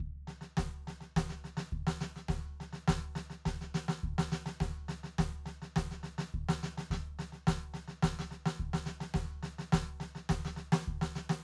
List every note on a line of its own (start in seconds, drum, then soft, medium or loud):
0.01 kick medium
0.28 snare soft
0.42 snare soft
0.58 kick medium
0.58 snare medium
0.88 snare medium
1.01 snare soft
1.17 kick medium
1.17 snare loud
1.30 snare soft
1.45 snare soft
1.58 snare medium
1.73 kick medium
1.87 snare medium
2.01 snare medium
2.17 snare soft
2.29 kick medium
2.29 snare medium
2.61 snare soft
2.73 snare medium
2.88 kick medium
2.88 snare loud
3.16 snare medium
3.30 snare soft
3.46 kick medium
3.46 snare medium
3.62 snare soft
3.75 snare medium
3.89 snare medium
4.04 kick medium
4.19 snare medium
4.32 snare medium
4.46 snare medium
4.61 kick medium
4.61 snare medium
4.89 snare medium
5.04 snare soft
5.19 kick medium
5.19 snare medium
5.46 snare medium
5.62 snare soft
5.77 kick medium
5.77 snare medium
5.92 snare soft
6.04 snare medium
6.19 snare medium
6.35 kick medium
6.49 snare loud
6.49 open hi-hat soft
6.64 snare medium
6.78 snare medium
6.91 kick medium
6.91 snare medium
7.19 snare medium
7.33 snare soft
7.48 kick medium
7.48 snare loud
7.74 snare medium
7.88 snare soft
8.03 kick medium
8.03 snare loud
8.20 snare medium
8.32 snare soft
8.46 snare medium
8.60 kick medium
8.74 snare medium
8.86 snare medium
9.01 snare medium
9.15 kick medium
9.15 snare medium
9.43 snare medium
9.59 snare medium
9.73 kick medium
9.73 snare loud
10.01 snare medium
10.16 snare soft
10.30 kick medium
10.30 snare loud
10.45 snare medium
10.57 snare soft
10.73 snare loud
10.88 kick medium
11.02 snare medium
11.16 snare medium
11.30 snare medium